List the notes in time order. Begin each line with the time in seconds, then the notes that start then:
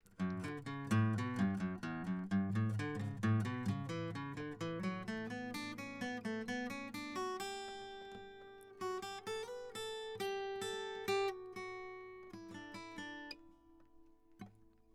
0.21 F#2
0.45 D3
0.67 C#3
0.92 A2
1.19 B2
1.38 G2
1.57 F#2
1.84 E2
2.06 F#2
2.32 G2
2.57 A2
2.80 D3
3.01 C#3
3.24 A2
3.46 B2
3.70 C#3
3.87 A2 E3
4.16 C#3
4.38 D3
4.62 E3
4.85 F#3
5.09 A3
5.32 B3
5.55 D4
5.79 C#4
6.02 B3
6.26 A3
6.49 B3
6.71 C#4
6.95 D4
7.17 F#4
7.41 G4
8.82 F#4
9.04 G4
9.28 A4
9.44 B4
9.76 A4
10.21 G4
10.62 A4
11.09 G4
11.29 F#4
11.57 F#4
12.35 E4
12.56 D4
12.75 E4
12.99 D4